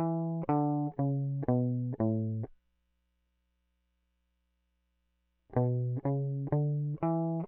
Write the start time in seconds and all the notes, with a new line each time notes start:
0.00 E3
0.50 D3
1.01 C#3
1.50 B2
2.02 A2
5.58 B2
6.07 C#3
6.54 D3
7.04 E3